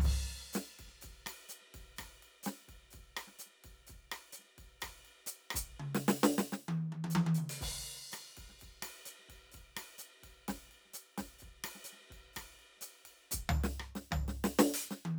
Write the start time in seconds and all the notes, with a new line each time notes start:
0.01 kick, floor tom, hi-hat pedal
0.05 crash
0.13 kick
0.53 snare, hi-hat pedal, ride
0.79 kick, ride
0.87 snare
1.02 kick, hi-hat pedal, ride
1.09 kick
1.27 cross-stick, ride
1.49 hi-hat pedal
1.62 snare
1.75 kick, ride
1.80 kick
1.97 kick, cross-stick, hi-hat pedal, ride
2.04 kick
2.23 ride
2.43 snare, hi-hat pedal, ride
2.69 kick, ride
2.83 snare
2.91 kick, hi-hat pedal, ride
2.99 kick
3.17 cross-stick, ride
3.27 snare
3.39 hi-hat pedal, ride
3.46 snare
3.64 kick, ride
3.87 kick, hi-hat pedal, ride
3.95 kick
4.12 cross-stick, ride
4.33 hi-hat pedal, ride
4.39 snare
4.43 snare
4.58 kick, ride
4.81 kick, cross-stick, hi-hat pedal, ride
4.88 kick
5.05 ride
5.27 hi-hat pedal, ride
5.51 kick, cross-stick, ride
5.56 hi-hat pedal
5.61 kick
5.80 mid tom
5.95 snare
6.09 snare
6.24 snare
6.39 snare
6.53 snare
6.69 high tom
6.93 high tom
7.05 high tom
7.11 hi-hat pedal
7.16 high tom
7.27 high tom
7.35 hi-hat pedal, mid tom
7.50 closed hi-hat
7.62 kick, hi-hat pedal, crash
7.68 kick
8.12 cross-stick, hi-hat pedal, ride
8.37 kick, ride
8.50 snare
8.59 kick, hi-hat pedal, ride
8.68 kick
8.83 cross-stick, ride
9.06 hi-hat pedal, ride
9.19 snare
9.29 kick, ride
9.52 kick, hi-hat pedal, ride
9.59 kick
9.77 cross-stick, ride
9.99 hi-hat pedal, ride
10.23 kick, ride
10.49 kick, snare, ride
10.54 kick
10.67 snare
10.72 ride
10.86 snare
10.90 snare
10.94 hi-hat pedal, ride
11.18 kick, snare, ride
11.37 snare, hi-hat pedal, ride
11.43 kick
11.48 kick
11.64 cross-stick, ride
11.75 snare
11.85 hi-hat pedal
11.89 snare, ride
11.97 snare
12.00 snare
12.02 snare
12.11 kick, ride
12.34 kick, cross-stick, hi-hat pedal, ride
12.59 ride
12.77 snare
12.81 hi-hat pedal, ride
13.04 kick, ride
13.31 kick, hi-hat pedal
13.40 kick
13.50 floor tom
13.55 floor tom
13.64 snare
13.80 cross-stick
13.96 snare
14.11 kick, floor tom
14.17 kick
14.28 snare
14.44 snare
14.59 snare
14.74 closed hi-hat
14.91 snare
15.06 high tom